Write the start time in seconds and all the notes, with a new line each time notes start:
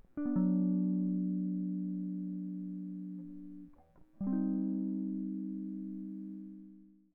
0.17 D4
0.26 B3
0.36 F#3
4.21 G3
4.27 C4
4.33 D#4